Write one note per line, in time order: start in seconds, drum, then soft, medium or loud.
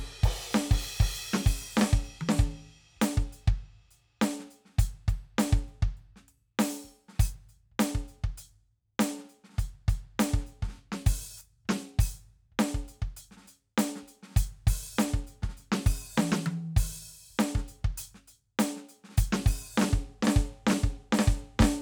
0.23 kick loud
0.23 hi-hat pedal medium
0.23 crash loud
0.52 snare loud
0.52 hi-hat pedal medium
0.71 kick loud
0.71 crash loud
0.83 hi-hat pedal medium
1.00 kick loud
1.00 crash loud
1.15 hi-hat pedal loud
1.33 snare loud
1.46 open hi-hat loud
1.46 kick loud
1.77 snare loud
1.77 hi-hat pedal medium
1.81 snare loud
1.93 kick loud
2.04 hi-hat pedal soft
2.21 high tom loud
2.29 snare loud
2.39 kick loud
2.97 kick soft
3.02 closed hi-hat loud
3.02 snare loud
3.17 kick loud
3.33 closed hi-hat medium
3.48 kick loud
3.91 closed hi-hat soft
4.21 closed hi-hat medium
4.21 snare loud
4.39 snare soft
4.45 snare soft
4.50 closed hi-hat soft
4.65 snare soft
4.69 snare soft
4.73 snare soft
4.76 closed hi-hat loud
4.76 kick loud
4.76 snare soft
5.08 kick loud
5.08 closed hi-hat medium
5.38 closed hi-hat loud
5.38 snare loud
5.53 kick loud
5.68 closed hi-hat soft
5.82 kick loud
5.97 closed hi-hat soft
6.16 snare soft
6.20 snare soft
6.28 closed hi-hat soft
6.59 open hi-hat loud
6.59 snare loud
6.84 kick soft
6.84 snare soft
7.08 snare soft
7.13 snare soft
7.16 snare soft
7.19 open hi-hat loud
7.19 kick loud
7.19 snare soft
7.19 hi-hat pedal soft
7.49 closed hi-hat soft
7.72 kick soft
7.79 closed hi-hat loud
7.79 snare loud
7.95 kick medium
8.08 closed hi-hat soft
8.24 kick medium
8.24 crash soft
8.38 closed hi-hat medium
8.99 closed hi-hat loud
8.99 snare loud
9.19 snare soft
9.24 snare soft
9.29 closed hi-hat soft
9.44 snare soft
9.49 snare soft
9.53 snare soft
9.56 closed hi-hat medium
9.56 kick medium
9.56 snare soft
9.88 closed hi-hat medium
9.88 kick loud
10.19 closed hi-hat loud
10.19 snare loud
10.34 kick loud
10.39 snare soft
10.46 closed hi-hat soft
10.62 kick medium
10.62 snare soft
10.62 crash soft
10.68 snare soft
10.71 snare soft
10.73 snare soft
10.78 closed hi-hat soft
10.92 snare medium
11.06 open hi-hat loud
11.06 kick loud
11.38 hi-hat pedal medium
11.65 kick soft
11.65 snare loud
11.99 open hi-hat loud
11.99 kick loud
12.52 kick soft
12.59 open hi-hat loud
12.59 snare loud
12.59 hi-hat pedal medium
12.74 kick medium
12.88 closed hi-hat soft
13.02 kick medium
13.02 crash soft
13.06 ride soft
13.17 closed hi-hat medium
13.31 snare soft
13.37 snare soft
13.41 snare soft
13.44 snare soft
13.47 closed hi-hat soft
13.47 snare soft
13.78 closed hi-hat loud
13.78 snare loud
13.96 snare soft
14.02 kick soft
14.02 snare soft
14.08 closed hi-hat soft
14.23 snare soft
14.27 snare soft
14.30 snare soft
14.35 closed hi-hat loud
14.35 kick loud
14.35 snare soft
14.67 open hi-hat loud
14.67 kick loud
14.99 open hi-hat loud
14.99 snare loud
14.99 hi-hat pedal soft
15.14 kick medium
15.27 closed hi-hat soft
15.42 kick medium
15.42 snare soft
15.49 snare soft
15.53 snare soft
15.57 closed hi-hat soft
15.57 snare soft
15.72 snare loud
15.86 open hi-hat loud
15.86 kick loud
16.17 snare loud
16.17 hi-hat pedal medium
16.17 high tom loud
16.32 snare loud
16.46 high tom loud
16.77 open hi-hat loud
16.77 kick loud
17.30 kick soft
17.39 open hi-hat loud
17.39 snare loud
17.39 hi-hat pedal medium
17.55 kick medium
17.55 snare soft
17.68 closed hi-hat soft
17.84 kick loud
17.84 crash soft
17.98 closed hi-hat loud
18.14 snare soft
18.28 closed hi-hat medium
18.59 closed hi-hat loud
18.59 snare loud
18.76 snare soft
18.89 closed hi-hat soft
19.04 snare soft
19.09 snare soft
19.12 snare soft
19.18 closed hi-hat loud
19.18 kick loud
19.32 snare loud
19.46 open hi-hat loud
19.46 kick loud
19.78 snare loud
19.78 hi-hat pedal medium
19.81 snare loud
19.93 kick loud
20.23 snare loud
20.27 snare loud
20.36 kick loud
20.67 snare loud
20.70 snare loud
20.84 kick loud
21.12 snare loud
21.19 snare loud
21.28 kick loud
21.59 kick loud
21.59 snare loud
21.62 snare loud